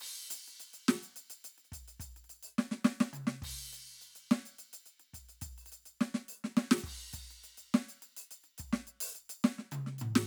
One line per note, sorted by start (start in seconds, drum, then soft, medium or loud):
0.01 crash medium
0.31 percussion loud
0.48 percussion soft
0.60 percussion medium
0.74 percussion medium
0.89 snare loud
1.03 percussion medium
1.16 percussion medium
1.30 percussion medium
1.45 percussion medium
1.58 percussion soft
1.65 percussion soft
1.72 kick soft
1.72 percussion medium
1.88 percussion soft
2.00 kick soft
2.00 percussion medium
2.17 percussion soft
2.25 percussion soft
2.30 percussion medium
2.43 percussion medium
2.59 snare loud
2.72 snare medium
2.85 snare loud
3.01 snare loud
3.13 mid tom medium
3.13 percussion medium
3.27 snare medium
3.42 kick soft
3.42 crash medium
3.48 kick soft
3.62 percussion soft
3.73 percussion medium
4.02 percussion soft
4.16 percussion soft
4.32 snare loud
4.46 percussion medium
4.59 percussion medium
4.74 percussion medium
4.86 percussion soft
5.00 percussion soft
5.14 kick soft
5.14 percussion medium
5.29 percussion soft
5.42 kick soft
5.42 percussion medium
5.58 percussion soft
5.66 percussion medium
5.72 percussion medium
5.86 percussion medium
6.01 snare loud
6.15 snare medium
6.29 percussion medium
6.33 percussion soft
6.45 snare medium
6.57 snare loud
6.72 snare loud
6.78 percussion medium
6.84 kick soft
6.84 crash medium
7.13 kick soft
7.13 percussion medium
7.31 percussion soft
7.44 percussion soft
7.58 percussion medium
7.75 snare loud
7.89 percussion medium
8.03 percussion medium
8.17 percussion medium
8.31 percussion medium
8.44 percussion soft
8.58 kick soft
8.58 percussion medium
8.73 snare medium
8.88 percussion medium
8.88 percussion soft
9.01 percussion loud
9.15 percussion medium
9.30 percussion medium
9.45 snare loud
9.59 snare soft
9.72 mid tom loud
9.72 percussion medium
9.87 snare soft
9.99 floor tom loud
9.99 percussion medium
10.16 snare loud